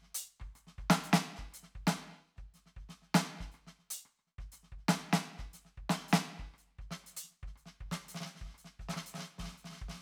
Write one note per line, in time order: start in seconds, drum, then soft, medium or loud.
0.01 snare soft
0.15 closed hi-hat loud
0.40 kick soft
0.40 cross-stick soft
0.55 cross-stick soft
0.55 snare soft
0.55 hi-hat pedal soft
0.67 snare soft
0.78 kick soft
0.78 cross-stick soft
0.78 snare soft
0.90 snare loud
0.94 cross-stick medium
1.02 snare soft
1.02 hi-hat pedal medium
1.13 snare loud
1.17 cross-stick medium
1.35 kick soft
1.35 snare soft
1.52 cross-stick soft
1.52 snare soft
1.52 hi-hat pedal medium
1.63 snare soft
1.74 kick soft
1.74 snare soft
1.87 snare loud
1.91 cross-stick soft
2.02 cross-stick soft
2.02 snare soft
2.26 snare soft
2.36 kick soft
2.36 snare soft
2.53 snare soft
2.53 hi-hat pedal soft
2.66 snare soft
2.76 kick soft
2.76 snare soft
2.79 snare soft
2.89 snare soft
3.02 snare soft
3.14 snare loud
3.19 cross-stick medium
3.40 kick soft
3.40 snare soft
3.52 cross-stick soft
3.52 snare soft
3.52 hi-hat pedal soft
3.67 snare soft
3.79 snare soft
3.90 closed hi-hat medium
4.05 cross-stick soft
4.19 cross-stick soft
4.27 snare soft
4.38 kick soft
4.38 snare soft
4.52 cross-stick soft
4.52 snare soft
4.52 hi-hat pedal medium
4.72 kick soft
4.78 snare soft
4.88 snare loud
4.93 cross-stick soft
5.02 snare soft
5.13 snare loud
5.18 cross-stick soft
5.38 kick soft
5.38 snare soft
5.53 snare soft
5.53 hi-hat pedal medium
5.65 snare soft
5.77 kick soft
5.77 snare soft
5.90 snare medium
6.02 snare soft
6.08 hi-hat pedal medium
6.13 snare loud
6.19 cross-stick soft
6.28 snare soft
6.39 kick soft
6.49 snare soft
6.53 cross-stick soft
6.53 snare soft
6.53 open hi-hat soft
6.58 hi-hat pedal soft
6.79 kick soft
6.79 snare soft
6.91 snare medium
7.03 cross-stick soft
7.03 snare soft
7.03 hi-hat pedal medium
7.17 closed hi-hat medium
7.24 snare soft
7.31 snare soft
7.43 kick soft
7.43 snare soft
7.54 cross-stick soft
7.54 snare soft
7.54 hi-hat pedal soft
7.66 snare soft
7.81 kick soft
7.81 cross-stick soft
7.91 snare medium
8.03 cross-stick soft
8.03 snare soft
8.08 hi-hat pedal medium
8.15 snare medium
8.21 snare medium
8.25 snare soft
8.30 snare soft
8.35 snare soft
8.39 kick soft
8.39 snare soft
8.42 snare soft
8.45 snare soft
8.48 snare soft
8.54 cross-stick soft
8.54 hi-hat pedal soft
8.54 open hi-hat soft
8.65 snare soft
8.79 kick soft
8.79 snare soft
8.89 snare medium
8.93 cross-stick medium
8.93 snare medium
9.00 snare soft
9.06 hi-hat pedal medium
9.14 snare medium
9.18 snare medium
9.21 snare soft
9.38 kick soft
9.38 snare soft
9.43 snare soft
9.46 snare soft
9.51 cross-stick soft
9.51 snare soft
9.57 hi-hat pedal soft
9.64 snare soft
9.69 snare soft
9.72 snare soft
9.75 snare soft
9.79 kick soft
9.79 cross-stick soft
9.89 snare soft
9.92 snare soft
9.95 snare soft
9.98 snare soft